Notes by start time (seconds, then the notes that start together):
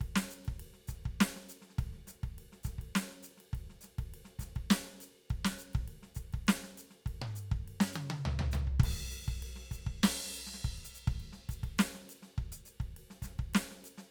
0.01 kick, ride
0.16 snare
0.30 hi-hat pedal, ride
0.45 kick, ride
0.60 ride
0.74 snare
0.88 kick, snare, hi-hat pedal, ride
1.04 kick, ride
1.21 snare, ride
1.36 snare
1.49 hi-hat pedal, ride
1.62 snare
1.70 snare
1.79 kick, ride
1.93 snare
2.07 snare, hi-hat pedal, ride
2.23 kick, ride
2.38 ride
2.53 snare
2.64 kick, snare, hi-hat pedal, ride
2.79 kick, ride
2.95 snare, ride
3.11 snare
3.23 hi-hat pedal, ride
3.37 snare, ride
3.42 snare
3.53 kick, ride
3.70 snare
3.81 snare, hi-hat pedal, ride
3.99 kick, ride
4.14 ride
4.25 snare
4.39 kick, snare, hi-hat pedal, ride
4.56 kick, ride
4.70 snare, ride
4.86 snare
5.01 hi-hat pedal, ride
5.17 snare
5.30 kick, ride
5.45 snare
5.59 hi-hat pedal, ride
5.74 kick, ride
5.88 ride
6.03 snare
6.15 kick, hi-hat pedal, ride
6.33 kick, ride
6.47 snare, ride
6.63 snare
6.78 hi-hat pedal, ride
6.91 snare
7.06 kick, ride
7.22 mid tom
7.36 hi-hat pedal, ride
7.52 kick
7.68 ride
7.81 snare
7.93 hi-hat pedal, high tom
8.10 high tom
8.25 floor tom
8.39 floor tom
8.52 floor tom, hi-hat pedal
8.67 kick
8.80 kick, ride, crash
9.11 hi-hat pedal, ride
9.28 kick, ride
9.43 ride
9.56 snare
9.71 kick, snare, hi-hat pedal, ride
9.87 kick
10.03 snare, crash
10.34 hi-hat pedal, ride
10.47 snare
10.54 snare
10.64 kick, ride
10.78 ride
10.85 open hi-hat
10.95 hi-hat pedal
11.08 kick, ride
11.20 ride
11.33 snare
11.49 kick, hi-hat pedal, ride
11.63 kick, ride
11.79 snare, ride
11.95 snare
12.10 hi-hat pedal, ride
12.23 snare
12.38 kick, ride
12.52 closed hi-hat
12.66 hi-hat pedal, ride
12.80 kick, ride
12.97 ride
13.10 snare
13.22 kick, snare, hi-hat pedal, ride
13.39 kick, ride
13.54 snare, ride
13.71 snare
13.85 hi-hat pedal, ride
13.98 snare